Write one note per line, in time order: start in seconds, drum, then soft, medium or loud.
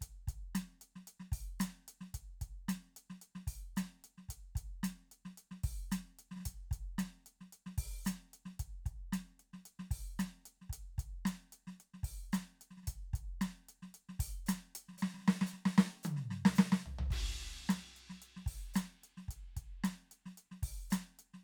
0.01 kick soft
0.01 closed hi-hat medium
0.27 kick soft
0.27 closed hi-hat medium
0.55 snare medium
0.55 closed hi-hat medium
0.81 closed hi-hat medium
0.96 snare soft
1.07 closed hi-hat medium
1.20 snare soft
1.32 kick soft
1.32 open hi-hat medium
1.59 snare medium
1.59 closed hi-hat loud
1.59 hi-hat pedal medium
1.88 closed hi-hat medium
2.01 snare soft
2.14 kick soft
2.14 closed hi-hat medium
2.41 kick soft
2.41 closed hi-hat medium
2.68 snare medium
2.68 closed hi-hat medium
2.96 closed hi-hat medium
3.10 snare soft
3.22 closed hi-hat medium
3.35 snare soft
3.47 kick soft
3.47 open hi-hat medium
3.76 snare medium
3.76 closed hi-hat medium
3.76 hi-hat pedal medium
4.04 closed hi-hat medium
4.18 snare soft
4.29 kick soft
4.29 closed hi-hat medium
4.55 kick soft
4.55 closed hi-hat medium
4.83 snare medium
4.83 closed hi-hat loud
5.11 closed hi-hat medium
5.25 snare soft
5.37 closed hi-hat medium
5.51 snare soft
5.64 kick soft
5.64 open hi-hat medium
5.91 snare medium
5.91 closed hi-hat medium
5.91 hi-hat pedal medium
6.19 closed hi-hat medium
6.31 snare soft
6.36 snare soft
6.40 snare soft
6.45 kick soft
6.45 closed hi-hat medium
6.71 kick soft
6.71 closed hi-hat medium
6.98 snare medium
6.98 closed hi-hat medium
7.26 closed hi-hat medium
7.41 snare soft
7.52 closed hi-hat medium
7.66 snare soft
7.78 kick soft
7.78 open hi-hat medium
8.05 snare medium
8.05 closed hi-hat loud
8.05 hi-hat pedal medium
8.33 closed hi-hat medium
8.45 snare soft
8.59 kick soft
8.59 closed hi-hat medium
8.86 kick soft
8.86 closed hi-hat soft
9.12 snare medium
9.12 closed hi-hat medium
9.39 closed hi-hat soft
9.53 snare soft
9.65 closed hi-hat medium
9.79 snare soft
9.91 kick soft
9.91 open hi-hat medium
10.19 snare medium
10.19 closed hi-hat medium
10.19 hi-hat pedal medium
10.46 closed hi-hat medium
10.61 snare soft
10.69 kick soft
10.69 closed hi-hat medium
10.98 kick soft
10.98 closed hi-hat medium
11.25 snare medium
11.25 closed hi-hat medium
11.52 closed hi-hat medium
11.67 snare soft
11.80 closed hi-hat soft
11.94 snare soft
12.03 kick soft
12.03 open hi-hat medium
12.33 snare medium
12.33 closed hi-hat medium
12.33 hi-hat pedal medium
12.61 closed hi-hat medium
12.71 snare soft
12.77 snare soft
12.83 snare soft
12.87 kick soft
12.87 snare soft
12.87 closed hi-hat medium
13.13 kick soft
13.13 closed hi-hat medium
13.41 snare medium
13.41 closed hi-hat medium
13.69 closed hi-hat medium
13.82 snare soft
13.94 closed hi-hat medium
14.09 snare soft
14.19 kick soft
14.19 open hi-hat loud
14.46 snare medium
14.46 closed hi-hat loud
14.46 hi-hat pedal medium
14.75 closed hi-hat loud
14.88 snare soft
14.93 snare soft
14.97 snare soft
14.97 hi-hat pedal medium
15.02 snare medium
15.14 snare soft
15.18 snare soft
15.21 snare soft
15.24 snare soft
15.41 snare medium
15.47 hi-hat pedal medium
15.53 snare soft
15.65 snare loud
15.78 snare loud
16.03 hi-hat pedal medium
16.03 high tom loud
16.16 snare soft
16.30 snare medium
16.45 snare loud
16.55 snare loud
16.55 hi-hat pedal medium
16.72 snare loud
16.86 floor tom medium
16.99 floor tom loud
17.10 kick soft
17.10 ride loud
17.69 snare loud
17.69 closed hi-hat medium
17.96 closed hi-hat soft
18.09 snare soft
18.22 closed hi-hat medium
18.36 snare soft
18.46 kick soft
18.46 open hi-hat medium
18.74 snare medium
18.74 closed hi-hat loud
18.74 hi-hat pedal medium
19.03 closed hi-hat medium
19.17 snare soft
19.28 kick soft
19.28 closed hi-hat medium
19.56 kick soft
19.56 closed hi-hat medium
19.84 snare medium
19.84 closed hi-hat medium
20.11 closed hi-hat medium
20.26 snare soft
20.37 closed hi-hat medium
20.51 snare soft
20.62 kick soft
20.62 open hi-hat medium
20.90 snare medium
20.90 closed hi-hat loud
20.90 hi-hat pedal medium
21.19 closed hi-hat medium
21.34 snare soft